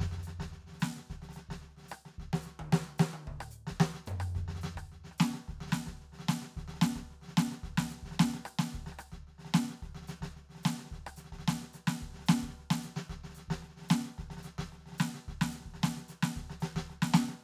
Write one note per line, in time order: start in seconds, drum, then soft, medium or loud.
0.01 kick soft
0.01 snare medium
0.08 kick soft
0.12 snare soft
0.18 snare soft
0.24 hi-hat pedal soft
0.28 snare soft
0.40 kick soft
0.40 snare medium
0.46 kick soft
0.53 snare soft
0.60 snare soft
0.66 snare soft
0.73 snare soft
0.78 snare soft
0.78 hi-hat pedal soft
0.83 snare medium
0.97 snare soft
1.11 kick soft
1.11 snare soft
1.17 kick soft
1.23 snare soft
1.30 snare soft
1.30 hi-hat pedal soft
1.37 snare soft
1.50 kick soft
1.50 snare medium
1.62 snare soft
1.69 snare soft
1.76 snare soft
1.78 snare soft
1.84 snare soft
1.89 cross-stick medium
1.89 snare soft
1.89 hi-hat pedal soft
2.06 snare soft
2.11 snare soft
2.19 kick soft
2.19 snare soft
2.25 kick soft
2.34 snare medium
2.43 hi-hat pedal soft
2.47 snare soft
2.60 kick soft
2.60 high tom medium
2.73 snare loud
2.88 high tom soft
2.99 snare loud
2.99 hi-hat pedal soft
3.14 high tom medium
3.28 kick soft
3.28 mid tom soft
3.34 kick soft
3.41 cross-stick medium
3.52 hi-hat pedal soft
3.68 snare medium
3.72 kick soft
3.81 snare loud
3.95 snare soft
4.07 floor tom loud
4.07 hi-hat pedal soft
4.21 cross-stick medium
4.36 kick soft
4.36 snare soft
4.44 kick soft
4.49 snare soft
4.56 snare soft
4.62 snare medium
4.62 hi-hat pedal soft
4.77 kick soft
4.77 cross-stick medium
4.93 snare soft
4.98 snare soft
5.05 snare soft
5.12 cross-stick soft
5.19 snare loud
5.19 hi-hat pedal medium
5.34 snare soft
5.49 kick soft
5.49 snare soft
5.56 kick soft
5.61 snare soft
5.67 snare soft
5.73 snare loud
5.73 hi-hat pedal soft
5.87 kick soft
5.87 snare soft
5.94 kick soft
6.01 snare soft
6.07 snare soft
6.12 snare soft
6.20 snare soft
6.25 snare soft
6.29 snare loud
6.29 hi-hat pedal soft
6.43 snare soft
6.57 kick soft
6.57 snare soft
6.64 kick soft
6.69 snare soft
6.75 snare soft
6.82 snare loud
6.82 hi-hat pedal soft
6.96 kick soft
6.96 snare soft
7.11 snare soft
7.18 snare soft
7.22 snare soft
7.29 snare soft
7.38 snare loud
7.38 hi-hat pedal soft
7.52 snare soft
7.64 kick soft
7.64 snare soft
7.71 kick soft
7.78 snare loud
7.83 cross-stick soft
7.90 snare soft
7.90 hi-hat pedal soft
7.97 snare soft
8.03 kick soft
8.03 snare soft
8.06 kick soft
8.06 snare soft
8.12 snare soft
8.20 snare loud
8.34 snare soft
8.46 cross-stick medium
8.46 hi-hat pedal soft
8.60 snare loud
8.73 kick soft
8.73 snare soft
8.82 kick soft
8.87 snare soft
8.93 cross-stick soft
8.99 cross-stick medium
8.99 hi-hat pedal soft
9.13 kick soft
9.13 snare soft
9.28 snare soft
9.33 snare soft
9.37 snare soft
9.39 snare soft
9.46 snare soft
9.51 snare soft
9.55 snare loud
9.55 hi-hat pedal soft
9.70 snare soft
9.83 kick soft
9.83 snare soft
9.96 snare soft
10.02 snare soft
10.08 snare medium
10.08 hi-hat pedal soft
10.22 kick soft
10.22 snare medium
10.37 snare soft
10.43 snare soft
10.48 snare soft
10.50 snare soft
10.56 snare soft
10.61 snare soft
10.61 hi-hat pedal soft
10.66 snare loud
10.79 snare soft
10.86 snare soft
10.92 kick soft
10.92 snare soft
11.07 cross-stick medium
11.17 snare soft
11.17 hi-hat pedal soft
11.25 snare soft
11.33 kick soft
11.33 snare soft
11.40 snare soft
11.49 snare loud
11.62 snare soft
11.74 snare soft
11.74 hi-hat pedal soft
11.88 snare loud
12.01 kick soft
12.01 snare soft
12.06 snare soft
12.11 kick soft
12.11 snare soft
12.14 snare soft
12.20 snare soft
12.27 snare loud
12.27 hi-hat pedal soft
12.42 kick soft
12.42 snare soft
12.49 snare soft
12.60 snare soft
12.71 snare loud
12.83 snare soft
12.83 hi-hat pedal soft
12.97 snare medium
13.10 kick soft
13.10 snare soft
13.17 kick soft
13.24 snare soft
13.29 snare soft
13.35 snare soft
13.35 hi-hat pedal soft
13.37 snare soft
13.49 kick soft
13.49 snare medium
13.54 kick soft
13.63 snare soft
13.70 snare soft
13.76 snare soft
13.82 snare soft
13.87 snare soft
13.87 hi-hat pedal medium
13.91 snare loud
14.06 snare soft
14.19 kick soft
14.19 snare soft
14.26 kick soft
14.31 snare soft
14.38 snare soft
14.44 snare soft
14.44 hi-hat pedal soft
14.59 kick soft
14.59 snare medium
14.73 snare soft
14.79 snare soft
14.83 snare soft
14.87 snare soft
14.93 snare soft
14.99 snare loud
14.99 hi-hat pedal medium
15.15 snare soft
15.29 kick soft
15.29 snare soft
15.42 snare loud
15.51 snare soft
15.51 hi-hat pedal soft
15.61 snare soft
15.66 kick soft
15.66 snare soft
15.75 snare soft
15.80 snare soft
15.84 snare loud
15.98 snare soft
16.09 snare soft
16.09 hi-hat pedal soft
16.23 snare loud
16.37 kick soft
16.37 snare soft
16.44 kick soft
16.51 snare soft
16.61 snare medium
16.61 hi-hat pedal soft
16.76 kick soft
16.76 snare medium
16.82 kick soft
16.91 snare soft
17.03 snare loud
17.15 snare loud
17.15 hi-hat pedal soft
17.29 snare soft